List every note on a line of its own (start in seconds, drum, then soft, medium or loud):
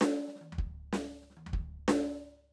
0.00 snare loud
0.00 hi-hat pedal soft
0.28 snare soft
0.35 snare soft
0.41 high tom soft
0.52 floor tom medium
0.58 kick medium
0.93 snare loud
1.22 snare soft
1.30 snare soft
1.37 high tom soft
1.46 floor tom medium
1.53 kick medium
1.88 snare loud